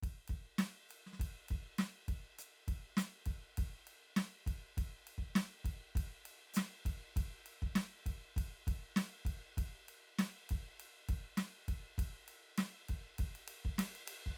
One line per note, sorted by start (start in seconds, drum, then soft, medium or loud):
0.00 kick soft
0.00 ride medium
0.28 kick soft
0.28 ride medium
0.58 snare loud
0.58 hi-hat pedal soft
0.58 ride medium
0.89 hi-hat pedal soft
0.89 ride medium
1.06 snare soft
1.13 snare soft
1.19 kick medium
1.19 snare soft
1.19 ride medium
1.49 kick medium
1.49 ride medium
1.78 snare medium
1.78 ride medium
2.08 kick medium
2.08 ride medium
2.39 hi-hat pedal medium
2.39 ride medium
2.68 kick medium
2.68 ride medium
2.97 snare loud
2.97 hi-hat pedal medium
2.97 ride medium
3.26 kick medium
3.26 ride medium
3.57 kick medium
3.57 ride medium
3.87 ride medium
4.16 snare loud
4.16 ride medium
4.46 kick medium
4.46 ride medium
4.77 kick medium
4.77 ride medium
5.07 ride medium
5.18 kick soft
5.35 snare loud
5.35 ride medium
5.64 kick medium
5.64 ride medium
5.95 kick medium
5.95 ride medium
6.25 ride medium
6.54 snare loud
6.54 hi-hat pedal medium
6.54 ride medium
6.85 kick medium
6.85 ride medium
7.16 kick medium
7.16 ride medium
7.46 ride medium
7.62 kick medium
7.75 snare loud
7.75 ride medium
8.06 kick medium
8.06 ride medium
8.36 kick medium
8.36 ride medium
8.67 kick medium
8.67 ride medium
8.96 snare loud
8.96 ride medium
9.25 kick medium
9.25 ride medium
9.57 kick medium
9.57 ride medium
9.88 ride medium
10.19 snare loud
10.19 ride medium
10.49 kick medium
10.49 ride medium
10.80 ride medium
11.09 kick medium
11.09 ride medium
11.37 snare medium
11.37 ride medium
11.68 kick medium
11.68 ride medium
11.98 kick medium
11.98 ride medium
12.28 ride medium
12.58 snare medium
12.58 ride medium
12.88 kick medium
12.88 ride medium
13.18 kick medium
13.18 ride medium
13.35 ride medium
13.48 ride medium
13.65 kick medium
13.78 snare medium
13.78 ride loud
13.95 ride medium
14.08 ride loud
14.26 kick soft